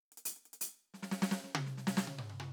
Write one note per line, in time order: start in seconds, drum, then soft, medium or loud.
0.12 closed hi-hat soft
0.17 closed hi-hat medium
0.25 closed hi-hat loud
0.36 closed hi-hat soft
0.45 closed hi-hat soft
0.53 closed hi-hat medium
0.61 closed hi-hat loud
0.94 snare soft
1.03 snare medium
1.11 snare medium
1.22 snare loud
1.31 snare medium
1.44 snare soft
1.55 high tom loud
1.66 snare soft
1.77 snare soft
1.87 snare loud
2.07 high tom medium
2.18 mid tom medium
2.30 high tom medium
2.40 high tom medium